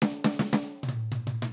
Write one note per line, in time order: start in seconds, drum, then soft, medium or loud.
0.02 snare loud
0.24 snare loud
0.39 snare loud
0.53 snare loud
0.83 high tom loud
0.89 high tom loud
1.12 high tom loud
1.27 high tom loud
1.42 high tom loud